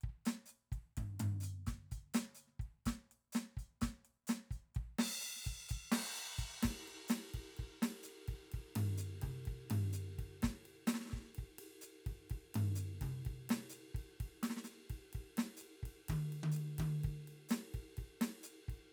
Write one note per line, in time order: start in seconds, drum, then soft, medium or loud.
0.01 kick soft
0.01 closed hi-hat soft
0.09 kick soft
0.25 closed hi-hat medium
0.25 snare medium
0.46 closed hi-hat soft
0.46 hi-hat pedal soft
0.72 kick soft
0.72 closed hi-hat soft
0.78 kick soft
0.97 kick soft
0.97 closed hi-hat soft
0.97 floor tom medium
1.20 closed hi-hat medium
1.20 floor tom medium
1.40 closed hi-hat soft
1.40 hi-hat pedal soft
1.67 closed hi-hat soft
1.67 kick soft
1.67 snare soft
1.73 kick soft
1.91 closed hi-hat soft
1.91 kick soft
1.97 kick soft
2.14 closed hi-hat medium
2.14 snare medium
2.35 closed hi-hat soft
2.35 hi-hat pedal soft
2.47 snare soft
2.60 kick soft
2.60 closed hi-hat soft
2.65 kick soft
2.86 closed hi-hat medium
2.86 kick soft
2.86 snare medium
2.92 kick soft
3.11 closed hi-hat soft
3.32 closed hi-hat medium
3.32 snare medium
3.32 hi-hat pedal medium
3.57 closed hi-hat soft
3.57 kick soft
3.81 closed hi-hat medium
3.81 kick soft
3.81 snare medium
3.88 kick soft
4.05 closed hi-hat soft
4.27 closed hi-hat medium
4.27 snare medium
4.27 hi-hat pedal medium
4.51 closed hi-hat soft
4.51 kick soft
4.56 kick soft
4.75 kick soft
4.75 closed hi-hat soft
4.99 snare medium
4.99 crash medium
5.21 closed hi-hat medium
5.21 hi-hat pedal medium
5.36 snare soft
5.44 closed hi-hat soft
5.44 kick soft
5.52 kick soft
5.69 closed hi-hat medium
5.69 kick soft
5.77 kick soft
5.92 snare medium
5.92 crash medium
6.12 closed hi-hat medium
6.12 hi-hat pedal soft
6.38 closed hi-hat soft
6.38 kick soft
6.44 kick soft
6.63 kick soft
6.63 snare medium
6.63 ride medium
6.70 kick soft
6.88 ride soft
7.08 snare medium
7.08 hi-hat pedal medium
7.08 ride medium
7.34 kick soft
7.34 ride soft
7.39 kick soft
7.57 kick soft
7.57 ride soft
7.64 kick soft
7.82 snare medium
7.82 ride medium
8.03 hi-hat pedal medium
8.03 ride soft
8.28 kick soft
8.28 ride soft
8.34 kick soft
8.52 kick soft
8.52 ride soft
8.59 kick soft
8.76 floor tom loud
8.76 ride medium
8.98 hi-hat pedal medium
8.98 ride soft
9.22 kick soft
9.22 mid tom medium
9.22 ride medium
9.45 kick soft
9.45 ride soft
9.53 kick soft
9.70 floor tom loud
9.70 ride medium
9.93 hi-hat pedal medium
9.93 ride soft
10.19 kick soft
10.19 ride soft
10.24 kick soft
10.42 kick soft
10.42 snare medium
10.42 ride medium
10.50 kick soft
10.65 ride soft
10.87 snare medium
10.87 hi-hat pedal medium
10.87 ride medium
10.94 snare soft
11.00 snare soft
11.05 snare soft
11.10 kick soft
11.10 snare soft
11.15 kick soft
11.15 snare soft
11.20 snare soft
11.24 snare soft
11.27 snare soft
11.30 snare soft
11.33 snare soft
11.33 ride soft
11.36 snare soft
11.38 kick soft
11.38 snare soft
11.43 kick soft
11.59 ride medium
11.81 hi-hat pedal medium
11.81 ride soft
12.06 kick soft
12.06 ride soft
12.06 floor tom soft
12.12 kick soft
12.30 kick soft
12.30 ride soft
12.55 floor tom loud
12.55 ride medium
12.75 hi-hat pedal medium
12.75 ride soft
13.01 kick soft
13.01 mid tom medium
13.01 ride medium
13.07 kick soft
13.25 kick soft
13.25 ride soft
13.32 kick soft
13.49 snare medium
13.49 ride medium
13.70 hi-hat pedal medium
13.70 ride soft
13.95 kick soft
13.95 ride soft
14.00 kick soft
14.20 kick soft
14.20 ride soft
14.43 snare medium
14.43 ride medium
14.50 snare soft
14.57 snare soft
14.64 snare soft
14.64 hi-hat pedal soft
14.64 ride soft
14.71 snare soft
14.77 snare soft
14.81 snare soft
14.86 kick soft
14.86 snare soft
14.86 ride soft
14.91 snare soft
14.95 kick soft
14.95 snare soft
15.13 kick soft
15.13 ride soft
15.20 kick soft
15.37 snare medium
15.37 ride medium
15.57 hi-hat pedal medium
15.61 ride soft
15.83 kick soft
15.83 ride soft
16.09 kick soft
16.09 high tom medium
16.09 ride medium
16.15 kick soft
16.32 ride soft
16.43 high tom loud
16.52 hi-hat pedal medium
16.57 ride soft
16.78 kick soft
16.78 high tom loud
16.78 ride medium
16.84 kick soft
17.04 kick soft
17.04 ride soft
17.10 kick soft
17.28 ride soft
17.49 snare medium
17.49 hi-hat pedal medium
17.49 ride medium
17.74 kick soft
17.74 snare soft
17.74 ride soft
17.80 kick soft
17.97 kick soft
17.97 ride soft
18.03 kick soft
18.21 snare medium
18.21 ride medium
18.43 hi-hat pedal medium
18.43 ride soft
18.68 kick soft
18.68 ride soft
18.74 kick soft